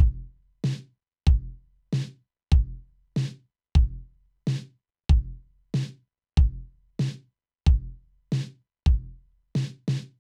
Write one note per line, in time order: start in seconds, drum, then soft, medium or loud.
0.01 kick loud
0.66 snare loud
1.29 kick loud
1.95 snare loud
2.54 kick loud
3.18 snare loud
3.77 kick loud
4.49 snare loud
5.11 kick loud
5.76 snare loud
6.39 kick loud
7.01 snare loud
7.68 kick loud
8.34 snare loud
8.88 kick loud
9.57 snare loud
9.90 snare loud